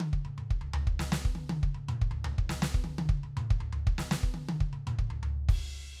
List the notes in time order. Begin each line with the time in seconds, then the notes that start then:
0.00 high tom
0.13 kick
0.25 mid tom
0.38 mid tom
0.51 kick
0.61 floor tom
0.74 floor tom
0.87 kick
0.99 snare
1.12 snare
1.25 kick
1.35 high tom
1.50 high tom
1.63 kick
1.75 mid tom
1.89 mid tom
2.02 kick
2.11 floor tom
2.25 floor tom
2.38 kick
2.49 snare
2.62 snare
2.74 kick
2.84 high tom
2.99 high tom
3.09 kick
3.24 mid tom
3.37 mid tom
3.51 kick
3.61 floor tom
3.73 floor tom
3.87 kick
3.98 snare
4.11 snare
4.23 kick
4.34 high tom
4.49 high tom
4.61 kick
4.73 mid tom
4.87 mid tom
4.99 kick
5.10 floor tom
5.23 floor tom
5.49 kick, ride